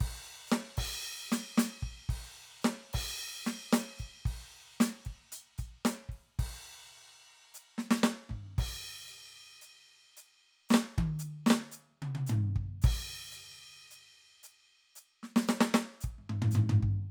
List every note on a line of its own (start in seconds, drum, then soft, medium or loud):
0.01 kick medium
0.01 crash medium
0.23 open hi-hat soft
0.48 hi-hat pedal medium
0.52 snare loud
0.78 kick medium
0.78 crash loud
1.05 closed hi-hat soft
1.32 closed hi-hat loud
1.32 snare loud
1.58 closed hi-hat loud
1.58 snare loud
1.83 kick soft
2.09 kick medium
2.09 crash medium
2.35 open hi-hat soft
2.62 snare loud
2.62 hi-hat pedal soft
2.94 kick medium
2.94 crash loud
3.20 closed hi-hat soft
3.47 closed hi-hat medium
3.47 snare medium
3.73 closed hi-hat loud
3.73 snare loud
3.99 closed hi-hat soft
3.99 kick soft
4.26 kick medium
4.26 crash medium
4.50 closed hi-hat soft
4.81 closed hi-hat loud
4.81 snare loud
5.05 kick soft
5.05 closed hi-hat soft
5.32 closed hi-hat loud
5.58 closed hi-hat medium
5.58 kick soft
5.85 open hi-hat loud
5.85 snare loud
6.09 kick soft
6.09 open hi-hat soft
6.39 kick medium
6.39 crash medium
7.55 hi-hat pedal medium
7.78 snare medium
7.91 snare loud
8.04 snare loud
8.30 kick soft
8.30 floor tom medium
8.59 kick medium
8.59 crash loud
9.08 hi-hat pedal soft
9.62 hi-hat pedal medium
10.17 hi-hat pedal medium
10.70 snare loud
10.70 hi-hat pedal medium
10.74 snare loud
10.98 kick medium
10.98 high tom loud
11.20 hi-hat pedal loud
11.47 snare loud
11.51 snare loud
11.72 hi-hat pedal medium
12.02 mid tom loud
12.15 mid tom loud
12.27 floor tom loud
12.27 hi-hat pedal medium
12.56 kick medium
12.82 kick loud
12.82 hi-hat pedal medium
12.82 crash loud
13.32 hi-hat pedal medium
13.91 hi-hat pedal medium
14.44 hi-hat pedal medium
14.96 hi-hat pedal medium
15.23 snare soft
15.36 snare loud
15.48 snare loud
15.48 hi-hat pedal medium
15.61 snare loud
15.75 snare loud
16.01 kick medium
16.01 hi-hat pedal medium
16.19 floor tom soft
16.30 floor tom loud
16.42 floor tom loud
16.51 hi-hat pedal medium
16.56 floor tom loud
16.70 floor tom loud
16.83 kick medium